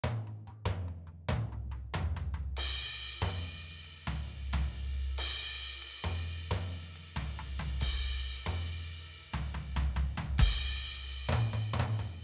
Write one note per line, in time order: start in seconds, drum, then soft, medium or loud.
0.04 high tom loud
0.27 high tom soft
0.47 high tom medium
0.65 mid tom loud
0.88 mid tom soft
1.07 mid tom soft
1.29 floor tom loud
1.29 high tom loud
1.52 floor tom soft
1.71 floor tom medium
1.94 floor tom loud
1.94 mid tom loud
2.16 floor tom medium
2.34 floor tom medium
2.57 ride loud
2.57 crash loud
2.79 ride soft
3.22 mid tom loud
3.22 ride loud
3.44 ride soft
3.63 ride soft
3.85 ride medium
4.07 floor tom loud
4.07 ride medium
4.28 ride soft
4.53 floor tom loud
4.53 ride loud
4.76 ride soft
4.94 ride medium
5.18 ride loud
5.18 crash loud
5.43 ride soft
5.62 ride soft
5.82 ride loud
6.04 mid tom loud
6.04 ride loud
6.24 ride medium
6.51 mid tom loud
6.51 ride medium
6.72 ride medium
6.96 ride medium
7.16 floor tom loud
7.16 ride loud
7.39 floor tom medium
7.39 ride medium
7.59 floor tom loud
7.59 ride loud
7.80 kick medium
7.80 ride loud
7.80 crash loud
8.24 ride soft
8.46 mid tom loud
8.46 ride loud
8.68 ride medium
8.89 ride soft
9.10 ride soft
9.33 floor tom loud
9.54 floor tom loud
9.76 floor tom loud
9.96 floor tom loud
10.17 floor tom loud
10.38 kick loud
10.38 ride loud
10.38 crash loud
11.29 high tom loud
11.32 high tom loud
11.53 high tom medium
11.74 high tom loud
11.79 high tom loud
11.99 mid tom medium